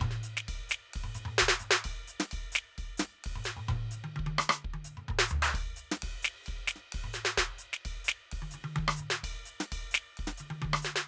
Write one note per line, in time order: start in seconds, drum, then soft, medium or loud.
0.01 kick soft
0.01 mid tom loud
0.11 snare soft
0.24 hi-hat pedal medium
0.38 snare medium
0.49 kick soft
0.49 ride bell medium
0.55 kick soft
0.70 snare medium
0.70 hi-hat pedal medium
0.94 kick soft
0.94 ride medium
1.04 mid tom medium
1.15 hi-hat pedal medium
1.15 mid tom medium
1.26 mid tom medium
1.39 kick soft
1.39 snare loud
1.49 snare loud
1.60 hi-hat pedal medium
1.60 mid tom soft
1.72 snare loud
1.85 kick soft
1.85 ride bell medium
2.08 hi-hat pedal medium
2.21 snare medium
2.32 kick soft
2.32 ride bell medium
2.53 snare loud
2.53 hi-hat pedal medium
2.79 kick soft
2.79 ride bell medium
2.85 kick soft
2.98 snare medium
2.98 hi-hat pedal medium
3.25 kick soft
3.25 ride medium
3.32 kick soft
3.32 mid tom medium
3.45 snare medium
3.45 hi-hat pedal medium
3.57 mid tom medium
3.69 kick soft
3.69 mid tom loud
3.77 kick soft
3.92 hi-hat pedal medium
3.92 high tom soft
4.05 high tom medium
4.17 kick soft
4.17 high tom medium
4.26 kick soft
4.26 high tom medium
4.39 cross-stick loud
4.39 hi-hat pedal medium
4.50 cross-stick loud
4.65 kick soft
4.71 kick soft
4.71 high tom medium
4.85 hi-hat pedal medium
4.85 mid tom soft
4.98 mid tom medium
5.09 kick soft
5.09 mid tom medium
5.19 snare loud
5.29 floor tom loud
5.29 hi-hat pedal medium
5.43 percussion loud
5.55 kick medium
5.55 ride bell medium
5.77 hi-hat pedal medium
5.77 ride soft
5.92 snare medium
6.03 kick soft
6.03 ride loud
6.10 kick soft
6.23 snare medium
6.23 hi-hat pedal medium
6.44 hi-hat pedal soft
6.44 ride bell medium
6.49 kick soft
6.68 snare medium
6.68 hi-hat pedal medium
6.76 snare soft
6.93 kick soft
6.93 ride medium
7.05 mid tom medium
7.14 snare soft
7.14 hi-hat pedal medium
7.26 snare medium
7.38 kick soft
7.38 snare loud
7.59 hi-hat pedal medium
7.74 snare medium
7.86 kick soft
7.86 ride bell medium
8.05 snare loud
8.05 hi-hat pedal medium
8.32 kick soft
8.32 ride medium
8.43 high tom medium
8.52 hi-hat pedal medium
8.52 high tom soft
8.77 kick soft
8.77 high tom loud
8.85 kick soft
8.85 cross-stick loud
8.97 hi-hat pedal medium
8.97 mid tom soft
9.11 snare medium
9.24 kick soft
9.24 ride bell medium
9.30 kick soft
9.46 hi-hat pedal medium
9.46 ride soft
9.61 snare medium
9.73 kick soft
9.73 ride bell medium
9.92 snare loud
9.92 hi-hat pedal medium
10.18 kick soft
10.18 ride medium
10.28 snare medium
10.38 hi-hat pedal medium
10.38 high tom soft
10.62 kick soft
10.62 high tom loud
10.74 cross-stick loud
10.83 snare medium
10.83 hi-hat pedal medium
10.97 snare medium